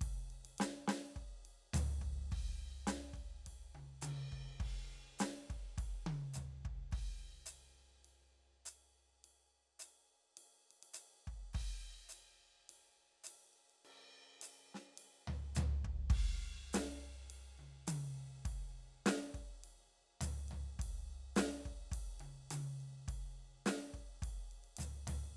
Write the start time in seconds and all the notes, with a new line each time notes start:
0.01 kick, ride
0.30 ride
0.45 ride
0.58 snare, hi-hat pedal, ride
0.88 snare, ride
1.16 kick
1.45 ride
1.74 floor tom, hi-hat pedal, ride
2.01 kick, ride
2.31 kick, crash
2.87 snare, hi-hat pedal, ride
3.13 kick, ride
3.46 kick, ride
3.75 high tom
4.02 hi-hat pedal, high tom, ride
4.32 kick
4.60 kick, crash
5.19 snare, hi-hat pedal, ride
5.50 kick, ride
5.78 kick, ride
6.06 high tom
6.34 floor tom, hi-hat pedal
6.65 kick
6.92 kick, crash
7.46 hi-hat pedal, ride
8.05 ride
8.66 hi-hat pedal, ride
9.24 ride
9.79 hi-hat pedal, ride
10.37 ride
10.71 ride
10.83 ride
10.94 hi-hat pedal, ride
11.27 kick
11.53 kick, crash
12.09 hi-hat pedal, ride
12.69 ride
13.24 hi-hat pedal, ride
13.53 ride
13.70 ride
13.85 ride
14.42 hi-hat pedal, ride
14.75 snare
14.98 ride
15.28 floor tom
15.55 floor tom, hi-hat pedal
15.84 kick
16.10 kick, crash
16.73 snare, hi-hat pedal, ride
17.00 ride
17.30 ride
17.58 high tom, ride
17.87 hi-hat pedal, high tom, ride
18.14 ride
18.45 kick, ride
19.06 snare, hi-hat pedal, ride
19.34 kick, ride
19.64 ride
20.21 floor tom, hi-hat pedal, ride
20.48 floor tom, ride
20.79 kick, ride
21.36 snare, hi-hat pedal, ride
21.65 kick, ride
21.92 kick, ride
22.20 high tom, ride
22.51 hi-hat pedal, high tom, ride
22.81 ride
23.08 kick, ride
23.66 snare, hi-hat pedal, ride
23.94 kick, ride
24.22 kick, ride
24.51 ride
24.64 ride
24.77 floor tom, hi-hat pedal, ride
25.07 floor tom, ride